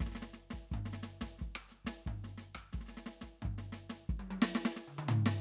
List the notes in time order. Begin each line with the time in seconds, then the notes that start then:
0.01 kick, snare
0.06 snare
0.12 kick, snare
0.15 snare
0.22 snare
0.34 snare
0.51 kick, snare
0.72 kick, floor tom
0.86 snare
0.93 snare
1.03 snare, hi-hat pedal
1.21 kick, snare
1.39 kick, snare
1.55 cross-stick
1.69 snare, hi-hat pedal
1.85 kick, snare
2.07 kick, floor tom
2.24 snare
2.38 snare, hi-hat pedal
2.55 kick, cross-stick
2.73 kick, snare
2.81 snare
2.86 snare
2.88 snare
2.97 snare
3.06 snare
3.10 hi-hat pedal
3.21 kick, snare
3.42 kick, floor tom
3.58 snare
3.73 snare, hi-hat pedal
3.90 snare
4.09 kick
4.20 kick, high tom
4.31 high tom
4.42 snare
4.55 snare
4.65 snare
4.76 snare, hi-hat pedal
4.88 mid tom
4.93 hi-hat pedal, ride
4.99 mid tom
5.09 floor tom
5.26 snare